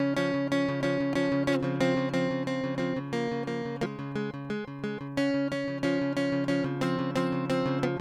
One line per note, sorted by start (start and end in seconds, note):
0.01 0.32 C#3
0.01 0.16 C#4
0.18 0.32 F3
0.18 0.50 C#4
0.35 0.69 C#3
0.53 0.71 F3
0.53 0.84 C#4
0.69 1.01 C#3
0.69 0.84 F3
0.84 1.00 F3
0.84 1.17 C#4
1.01 1.31 C#3
1.01 1.17 F3
1.17 1.32 F3
1.17 1.45 C#4
1.32 1.63 C#3
1.32 1.47 F3
1.48 1.63 F3
1.48 1.55 C#4
1.56 1.78 C4
1.63 1.97 C#3
1.63 1.81 F3
1.81 1.98 F3
1.81 2.12 C4
1.97 2.31 C#3
1.97 2.14 F3
2.14 2.31 F3
2.14 2.46 C4
2.32 2.62 C#3
2.32 2.47 F3
2.48 2.64 F3
2.48 2.77 C4
2.65 2.95 C#3
2.65 2.79 F3
2.79 2.97 F3
2.79 3.03 C4
2.97 3.30 C#3
3.13 3.31 F3
3.13 3.46 A#3
3.33 3.64 C#3
3.48 3.65 F3
3.48 3.78 A#3
3.67 3.99 C#3
3.83 4.14 G#3
4.00 4.32 C#3
4.35 4.59 C#3
4.51 4.66 G#3
4.68 4.99 C#3
4.84 5.00 G#3
5.02 5.33 C#3
5.18 5.50 C#4
5.35 5.66 C#3
5.53 5.81 C#4
5.69 6.00 C#3
5.69 5.84 F3
5.84 6.00 F3
5.84 6.14 C#4
6.00 6.31 C#3
6.00 6.18 F3
6.17 6.35 F3
6.17 6.46 C#4
6.33 6.64 C#3
6.33 6.48 F3
6.49 6.67 F3
6.49 6.64 C#4
6.65 6.98 C#3
6.65 6.84 F3
6.65 6.80 C4
6.82 7.00 F3
6.82 7.13 C4
7.00 7.32 C#3
7.00 7.18 F3
7.16 7.35 F3
7.16 7.47 C4
7.33 7.65 C#3
7.33 7.51 F3
7.50 7.67 F3
7.50 7.80 C4
7.67 7.99 C#3
7.67 7.84 F3
7.85 8.00 F3